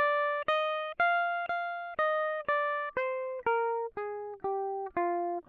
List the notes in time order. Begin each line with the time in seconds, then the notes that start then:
0.00 D5
0.49 D#5
1.00 F5
1.50 F5
1.99 D#5
2.49 D5
2.97 C5
3.47 A#4
3.98 G#4
4.45 G4
4.97 F4